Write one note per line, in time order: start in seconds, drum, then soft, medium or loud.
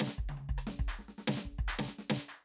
0.00 snare loud
0.07 snare medium
0.18 kick soft
0.29 high tom medium
0.37 high tom medium
0.49 kick soft
0.58 cross-stick medium
0.67 snare medium
0.79 kick medium
0.88 percussion medium
0.99 snare soft
1.08 snare soft
1.18 snare medium
1.27 snare loud
1.37 snare medium
1.45 kick soft
1.58 kick soft
1.68 percussion loud
1.79 snare loud
1.88 snare medium
1.98 snare medium
2.10 snare loud
2.21 closed hi-hat medium
2.28 percussion medium